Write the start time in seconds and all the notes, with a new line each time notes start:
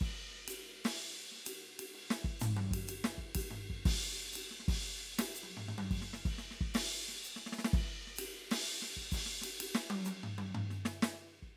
0.01 kick, crash
0.32 snare
0.48 hi-hat pedal, ride
0.85 snare, ride
1.00 ride
1.32 snare
1.36 snare
1.38 snare
1.46 hi-hat pedal, ride
1.80 ride
1.87 hi-hat pedal
1.94 ride
2.11 snare
2.25 kick
2.40 floor tom, hi-hat pedal
2.57 high tom
2.71 kick, ride
2.88 hi-hat pedal, ride
3.04 snare
3.18 kick
3.35 kick, hi-hat pedal, ride
3.51 floor tom
3.70 kick
3.86 kick, ride
4.33 hi-hat pedal, ride
4.51 snare
4.60 snare
4.69 kick, ride
4.84 ride
5.19 snare, ride
5.34 hi-hat pedal, ride
5.44 high tom
5.57 floor tom
5.69 floor tom
5.79 high tom
5.91 kick, ride
6.02 snare
6.14 snare
6.26 kick, crash
6.39 snare
6.51 snare
6.61 kick
6.75 snare, ride
7.09 snare
7.14 snare
7.24 hi-hat pedal
7.37 snare
7.47 snare
7.53 snare
7.59 snare
7.65 snare
7.74 kick, crash
8.07 snare
8.16 hi-hat pedal, ride
8.51 snare, ride
8.66 ride
8.82 snare
8.97 kick
9.12 kick, hi-hat pedal, ride
9.26 snare
9.42 snare, ride
9.61 ride
9.75 snare
9.90 high tom
10.05 hi-hat pedal, high tom
10.24 floor tom
10.38 high tom
10.55 floor tom
10.71 snare
10.86 snare
11.03 snare
11.43 kick